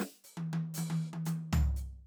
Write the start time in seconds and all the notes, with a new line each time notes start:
0.00 snare
0.24 hi-hat pedal
0.37 high tom
0.53 high tom
0.74 hi-hat pedal, high tom
0.90 high tom
1.13 high tom
1.26 hi-hat pedal, high tom
1.53 floor tom
1.76 hi-hat pedal